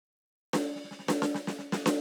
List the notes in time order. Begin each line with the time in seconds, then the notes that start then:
0.53 snare, ride
0.76 snare
0.84 snare
0.91 snare
0.99 snare
1.07 snare
1.08 snare
1.22 snare
1.35 snare
1.47 snare
1.59 snare
1.72 snare
1.86 snare